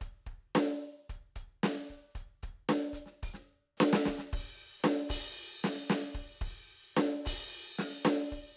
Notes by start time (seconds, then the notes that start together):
0.01 closed hi-hat, kick
0.26 kick, closed hi-hat
0.55 snare
1.09 closed hi-hat, kick
1.36 closed hi-hat, kick
1.63 snare
1.90 kick, closed hi-hat
2.15 closed hi-hat, kick
2.43 closed hi-hat, kick
2.69 snare
2.93 closed hi-hat, kick
3.06 snare
3.11 snare
3.23 open hi-hat, kick
3.34 snare
3.77 snare, hi-hat pedal
3.93 snare
4.05 kick, snare
4.18 snare
4.33 kick, crash
4.55 open hi-hat
4.79 hi-hat pedal
4.84 snare
5.09 kick, crash
5.36 closed hi-hat
5.64 closed hi-hat, snare
5.90 closed hi-hat, snare
6.15 kick
6.41 kick, crash
6.67 open hi-hat
6.94 snare, hi-hat pedal
7.25 kick, crash
7.51 closed hi-hat
7.78 closed hi-hat, snare
8.05 closed hi-hat, snare
8.31 closed hi-hat, kick